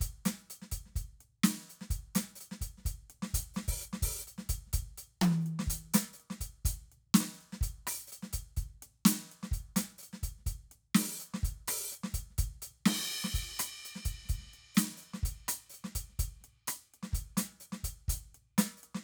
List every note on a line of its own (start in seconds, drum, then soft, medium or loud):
0.01 closed hi-hat medium
0.01 kick soft
0.26 closed hi-hat medium
0.26 snare medium
0.50 closed hi-hat soft
0.62 snare soft
0.72 closed hi-hat medium
0.72 kick soft
0.86 snare soft
0.92 kick soft
0.92 snare soft
0.96 closed hi-hat soft
0.96 snare soft
1.21 closed hi-hat soft
1.44 closed hi-hat medium
1.44 snare loud
1.61 hi-hat pedal soft
1.70 closed hi-hat soft
1.81 snare soft
1.91 closed hi-hat medium
1.91 kick soft
2.15 closed hi-hat medium
2.15 snare medium
2.36 hi-hat pedal medium
2.41 closed hi-hat soft
2.52 snare soft
2.61 closed hi-hat medium
2.61 kick soft
2.78 snare soft
2.82 snare soft
2.86 closed hi-hat medium
2.86 kick soft
2.86 snare soft
3.10 closed hi-hat soft
3.23 snare soft
3.34 open hi-hat loud
3.34 kick soft
3.40 kick soft
3.54 snare medium
3.54 hi-hat pedal soft
3.68 open hi-hat medium
3.68 kick soft
3.74 kick soft
3.82 hi-hat pedal medium
3.93 snare soft
4.03 open hi-hat loud
4.03 kick soft
4.08 kick soft
4.21 hi-hat pedal medium
4.28 closed hi-hat soft
4.38 snare soft
4.50 closed hi-hat medium
4.50 kick soft
4.67 snare soft
4.73 closed hi-hat medium
4.73 kick soft
4.80 kick soft
4.98 closed hi-hat medium
5.22 cross-stick medium
5.22 hi-hat pedal medium
5.22 high tom loud
5.31 snare soft
5.41 hi-hat pedal soft
5.46 closed hi-hat soft
5.60 snare medium
5.67 closed hi-hat medium
5.67 kick soft
5.94 closed hi-hat loud
5.94 snare medium
6.13 hi-hat pedal soft
6.20 closed hi-hat soft
6.30 snare soft
6.41 closed hi-hat medium
6.41 kick soft
6.65 closed hi-hat medium
6.65 kick soft
6.71 kick soft
6.92 closed hi-hat soft
7.15 closed hi-hat loud
7.15 snare loud
7.21 snare soft
7.34 hi-hat pedal soft
7.41 closed hi-hat soft
7.53 snare soft
7.61 closed hi-hat medium
7.61 kick soft
7.87 open hi-hat loud
7.87 cross-stick medium
8.08 hi-hat pedal medium
8.12 closed hi-hat soft
8.23 snare soft
8.33 closed hi-hat medium
8.33 kick soft
8.57 closed hi-hat soft
8.57 kick soft
8.63 kick soft
8.67 snare soft
8.83 closed hi-hat soft
9.06 closed hi-hat loud
9.06 snare loud
9.32 closed hi-hat soft
9.43 snare soft
9.52 closed hi-hat medium
9.52 kick soft
9.76 closed hi-hat loud
9.76 snare medium
9.99 hi-hat pedal medium
10.03 closed hi-hat soft
10.13 snare soft
10.23 closed hi-hat medium
10.23 kick soft
10.39 snare soft
10.47 closed hi-hat medium
10.47 kick soft
10.72 closed hi-hat soft
10.95 open hi-hat loud
10.95 snare loud
11.19 closed hi-hat soft
11.19 hi-hat pedal medium
11.34 snare soft
11.43 closed hi-hat medium
11.43 kick soft
11.68 open hi-hat loud
11.68 cross-stick medium
11.92 open hi-hat soft
11.92 hi-hat pedal medium
12.04 snare soft
12.14 closed hi-hat medium
12.14 kick soft
12.30 snare soft
12.38 closed hi-hat medium
12.38 kick soft
12.45 kick soft
12.62 closed hi-hat medium
12.86 snare medium
12.86 crash loud
13.06 hi-hat pedal soft
13.12 closed hi-hat soft
13.24 snare soft
13.34 closed hi-hat medium
13.34 kick soft
13.60 closed hi-hat loud
13.60 cross-stick medium
13.85 closed hi-hat soft
13.96 snare soft
14.05 closed hi-hat medium
14.05 kick soft
14.25 snare soft
14.29 closed hi-hat medium
14.29 kick soft
14.35 kick soft
14.40 snare soft
14.43 snare soft
14.49 snare soft
14.54 closed hi-hat soft
14.75 closed hi-hat loud
14.75 snare medium
14.75 hi-hat pedal medium
14.98 hi-hat pedal medium
15.03 closed hi-hat soft
15.14 snare soft
15.23 closed hi-hat medium
15.23 kick soft
15.23 snare soft
15.49 closed hi-hat loud
15.49 cross-stick medium
15.70 closed hi-hat soft
15.70 hi-hat pedal medium
15.85 snare soft
15.95 closed hi-hat medium
15.95 kick soft
16.10 snare soft
16.19 closed hi-hat medium
16.19 kick soft
16.41 snare soft
16.41 closed hi-hat soft
16.68 closed hi-hat medium
16.68 cross-stick medium
16.94 closed hi-hat soft
17.03 snare soft
17.12 closed hi-hat medium
17.12 kick soft
17.12 snare soft
17.37 closed hi-hat loud
17.37 snare medium
17.61 closed hi-hat soft
17.61 hi-hat pedal medium
17.73 snare soft
17.82 closed hi-hat medium
17.82 kick soft
17.82 snare soft
18.08 closed hi-hat medium
18.08 kick soft
18.35 closed hi-hat soft
18.58 closed hi-hat loud
18.58 snare medium
18.77 hi-hat pedal soft
18.84 closed hi-hat soft
18.95 snare soft